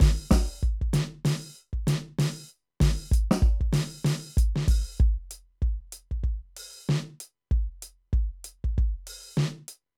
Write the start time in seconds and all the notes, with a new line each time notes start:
0.01 open hi-hat, kick, snare
0.32 open hi-hat, kick, snare
0.62 kick, hi-hat pedal
0.82 kick
0.90 kick, hi-hat pedal
0.94 closed hi-hat, snare
1.26 open hi-hat, snare
1.57 hi-hat pedal
1.74 kick
1.88 open hi-hat, snare
2.20 open hi-hat, snare
2.50 hi-hat pedal
2.81 open hi-hat, kick, snare
3.11 closed hi-hat, kick, hi-hat pedal
3.32 snare
3.43 kick
3.62 kick
3.71 kick, snare, hi-hat pedal
3.75 open hi-hat
4.05 open hi-hat, snare
4.36 closed hi-hat, kick, hi-hat pedal
4.57 snare
4.69 open hi-hat, kick
4.99 kick, hi-hat pedal
5.32 closed hi-hat
5.63 kick
5.93 closed hi-hat
6.12 kick
6.24 kick
6.57 open hi-hat
6.89 snare, hi-hat pedal
7.21 closed hi-hat
7.52 kick
7.83 closed hi-hat
8.14 kick
8.45 closed hi-hat
8.65 kick
8.79 kick
9.08 open hi-hat
9.37 snare, hi-hat pedal
9.69 closed hi-hat